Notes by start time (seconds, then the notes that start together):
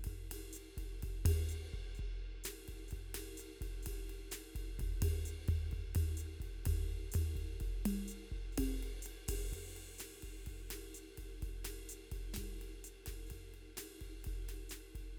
0.00 hi-hat pedal, ride
0.07 kick
0.13 kick
0.31 snare, ride
0.53 hi-hat pedal, ride
0.77 kick, ride
0.83 kick
1.03 kick, ride
1.10 kick
1.25 floor tom, ride
1.49 hi-hat pedal
1.64 snare
1.74 kick
1.79 kick
1.95 hi-hat pedal
1.99 kick
2.05 kick
2.44 snare, hi-hat pedal, ride
2.68 kick, ride
2.74 kick
2.88 hi-hat pedal, ride
2.93 kick
2.98 kick
3.14 snare, ride
3.37 hi-hat pedal, ride
3.61 kick, ride
3.66 kick
3.83 snare, hi-hat pedal, ride
3.87 kick
3.93 kick
4.10 ride
4.31 snare, hi-hat pedal, ride
4.55 kick, ride
4.61 kick
4.79 kick, floor tom, ride
4.87 kick
5.02 floor tom, ride
5.25 hi-hat pedal, ride
5.48 kick, floor tom, ride
5.54 kick
5.71 kick, ride
5.79 kick
5.95 floor tom, ride
6.17 hi-hat pedal, ride
6.40 kick, ride
6.46 kick
6.66 kick, floor tom, ride
6.74 kick
7.12 floor tom, hi-hat pedal, ride
7.36 kick, ride
7.41 kick
7.60 kick, ride
7.67 kick
7.85 mid tom, ride
8.08 hi-hat pedal
8.32 kick, mid tom, ride
8.37 kick
8.52 hi-hat pedal
8.58 kick, high tom, ride
8.65 kick
8.83 ride
9.02 hi-hat pedal, ride
9.28 kick, ride, crash
9.53 kick, ride
9.76 ride
9.98 snare, hi-hat pedal, ride
10.22 kick, ride
10.28 kick
10.43 hi-hat pedal, ride
10.47 kick
10.53 kick
10.70 snare, ride
10.94 hi-hat pedal, ride
11.18 kick, ride
11.23 kick
11.42 kick, ride
11.48 kick
11.64 snare, ride
11.89 hi-hat pedal, ride
12.12 kick, ride
12.17 kick
12.32 snare, hi-hat pedal, mid tom, ride
12.38 kick
12.43 kick
12.61 ride
12.84 hi-hat pedal, ride
13.06 kick, snare, ride
13.13 kick
13.27 hi-hat pedal, ride
13.31 kick
13.37 kick
13.54 ride
13.77 snare, hi-hat pedal, ride
14.01 kick, ride
14.06 kick
14.20 hi-hat pedal, ride
14.27 kick
14.32 kick
14.48 snare, ride
14.69 snare, hi-hat pedal, ride
14.95 kick, ride
15.00 kick